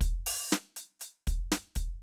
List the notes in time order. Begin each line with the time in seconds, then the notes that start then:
0.01 closed hi-hat, kick
0.27 open hi-hat
0.51 snare, hi-hat pedal
0.77 closed hi-hat
1.00 closed hi-hat, hi-hat pedal
1.27 closed hi-hat, kick
1.52 closed hi-hat, snare
1.76 closed hi-hat, kick